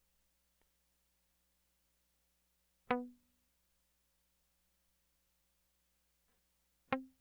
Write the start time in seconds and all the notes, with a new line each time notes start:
2.91 B3
6.93 C4